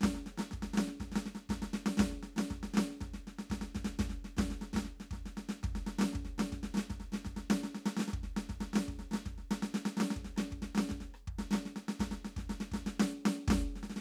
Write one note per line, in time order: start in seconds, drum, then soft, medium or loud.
0.01 kick soft
0.01 snare medium
0.04 snare medium
0.15 snare soft
0.26 snare soft
0.38 snare soft
0.38 snare medium
0.51 kick soft
0.51 snare soft
0.62 snare medium
0.74 snare medium
0.78 snare medium
0.88 snare soft
1.00 kick soft
1.00 snare soft
1.12 snare soft
1.16 snare medium
1.26 snare soft
1.35 snare soft
1.49 kick soft
1.49 snare medium
1.62 snare medium
1.74 snare medium
1.86 snare medium
1.97 kick medium
1.97 snare medium
1.99 snare loud
2.12 snare soft
2.23 snare soft
2.36 snare soft
2.38 snare medium
2.50 kick soft
2.50 snare soft
2.63 snare soft
2.74 snare medium
2.77 snare loud
2.91 snare soft
3.01 kick soft
3.01 snare soft
3.14 snare soft
3.27 snare soft
3.39 snare soft
3.50 kick soft
3.50 snare medium
3.61 snare soft
3.75 kick soft
3.75 snare soft
3.85 snare medium
3.99 kick medium
3.99 snare medium
4.10 snare soft
4.25 snare soft
4.37 kick medium
4.37 snare soft
4.39 snare medium
4.50 snare soft
4.61 snare soft
4.73 kick soft
4.73 snare medium
4.77 snare medium
4.85 snare soft
5.00 snare soft
5.11 kick soft
5.11 snare soft
5.26 snare soft
5.37 snare soft
5.49 snare medium
5.63 kick medium
5.63 snare soft
5.75 snare soft
5.87 snare medium
5.99 snare medium
6.01 snare medium
6.13 kick medium
6.13 snare soft
6.25 snare soft
6.38 snare soft
6.38 snare medium
6.52 kick soft
6.52 snare soft
6.63 snare soft
6.74 snare medium
6.77 snare medium
6.90 kick soft
6.90 snare soft
7.00 snare soft
7.12 snare soft
7.14 snare medium
7.25 kick soft
7.25 snare soft
7.37 snare soft
7.50 snare loud
7.64 snare soft
7.75 snare soft
7.86 snare medium
7.97 snare medium
8.00 snare medium
8.08 snare soft
8.13 kick medium
8.23 snare soft
8.37 snare medium
8.49 kick soft
8.49 snare soft
8.61 snare medium
8.73 snare medium
8.76 snare medium
8.88 kick soft
8.88 snare soft
8.99 snare soft
9.11 snare soft
9.14 snare medium
9.26 kick soft
9.26 snare soft
9.38 snare soft
9.51 snare medium
9.63 snare medium
9.74 snare medium
9.86 snare medium
9.97 snare medium
10.00 snare medium
10.11 snare medium
10.16 kick soft
10.25 snare soft
10.37 cross-stick soft
10.37 snare medium
10.51 kick soft
10.51 snare soft
10.62 snare soft
10.75 snare medium
10.78 snare medium
10.89 kick soft
10.89 snare soft
11.01 snare soft
11.14 cross-stick soft
11.28 kick soft
11.28 cross-stick soft
11.39 snare medium
11.51 snare medium
11.53 snare medium
11.66 snare soft
11.76 snare soft
11.89 snare medium
12.00 kick soft
12.00 snare medium
12.11 snare soft
12.25 snare soft
12.37 kick medium
12.37 snare soft
12.50 snare medium
12.60 snare medium
12.72 kick soft
12.72 snare medium
12.86 snare medium
13.00 snare loud
13.26 snare medium
13.48 kick medium
13.48 snare medium
13.50 snare loud
13.76 snare soft
13.83 snare soft
13.90 snare soft
13.96 snare soft